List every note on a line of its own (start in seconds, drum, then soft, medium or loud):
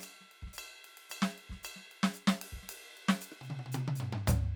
0.01 hi-hat pedal medium
0.01 ride bell loud
0.21 snare soft
0.32 ride soft
0.43 kick soft
0.47 snare soft
0.54 snare soft
0.54 hi-hat pedal medium
0.59 ride bell loud
0.85 ride medium
0.98 ride medium
1.10 hi-hat pedal medium
1.10 ride bell loud
1.23 snare medium
1.39 ride medium
1.50 kick soft
1.50 snare soft
1.64 hi-hat pedal medium
1.64 ride bell loud
1.76 snare soft
1.92 ride medium
2.04 snare loud
2.14 hi-hat pedal medium
2.14 ride soft
2.28 snare loud
2.42 ride loud
2.53 kick soft
2.63 snare soft
2.69 hi-hat pedal medium
2.69 ride loud
2.98 ride medium
3.09 snare loud
3.21 hi-hat pedal medium
3.21 ride medium
3.32 cross-stick soft
3.42 hi-hat pedal soft
3.42 high tom medium
3.51 high tom medium
3.60 high tom medium
3.67 high tom medium
3.72 hi-hat pedal medium
3.72 high tom loud
3.88 high tom loud
3.96 hi-hat pedal medium
4.01 mid tom medium
4.13 mid tom loud
4.28 kick medium
4.28 hi-hat pedal loud
4.28 floor tom loud
4.42 kick soft